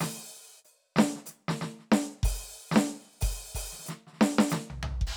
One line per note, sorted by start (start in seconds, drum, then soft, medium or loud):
0.00 open hi-hat loud
0.00 snare loud
0.17 snare soft
0.65 hi-hat pedal soft
0.96 snare loud
0.99 snare loud
1.15 snare soft
1.26 snare soft
1.26 hi-hat pedal loud
1.48 snare loud
1.61 snare medium
1.79 snare soft
1.92 snare loud
2.23 open hi-hat loud
2.23 kick loud
2.71 snare loud
2.76 snare loud
3.21 open hi-hat loud
3.21 kick loud
3.55 open hi-hat loud
3.55 kick medium
3.72 snare soft
3.79 snare soft
3.83 snare soft
3.83 hi-hat pedal loud
3.88 snare medium
4.07 snare soft
4.13 snare soft
4.16 snare soft
4.20 snare soft
4.20 snare loud
4.38 snare loud
4.49 snare loud
4.49 hi-hat pedal loud
4.70 floor tom medium
4.83 floor tom loud
5.01 kick medium
5.07 ride loud